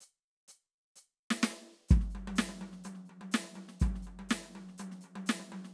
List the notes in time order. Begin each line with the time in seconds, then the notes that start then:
0.01 hi-hat pedal
0.48 hi-hat pedal
0.96 hi-hat pedal
1.30 snare
1.41 snare, hi-hat pedal
1.50 snare
1.88 kick, hi-hat pedal, high tom
2.00 snare
2.10 hi-hat pedal
2.15 high tom
2.27 high tom
2.35 snare, hi-hat pedal
2.49 high tom
2.58 hi-hat pedal, high tom
2.72 snare
2.84 hi-hat pedal, high tom
2.94 snare
3.05 hi-hat pedal
3.09 high tom
3.21 high tom
3.31 snare, hi-hat pedal
3.44 high tom
3.54 hi-hat pedal, high tom
3.68 snare
3.80 kick, hi-hat pedal, high tom
3.95 snare
4.02 hi-hat pedal
4.07 high tom
4.19 high tom
4.29 snare, hi-hat pedal
4.43 high tom
4.51 hi-hat pedal, high tom
4.68 snare
4.78 hi-hat pedal, high tom
4.91 snare
5.01 hi-hat pedal, high tom
5.15 high tom
5.26 snare, hi-hat pedal
5.40 high tom
5.49 hi-hat pedal, high tom
5.64 snare